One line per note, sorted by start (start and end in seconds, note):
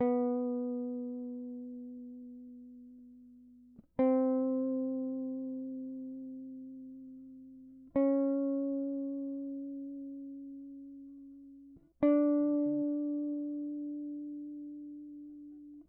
0.00 3.51 B3
3.98 7.90 C4
7.96 11.77 C#4
12.02 15.83 D4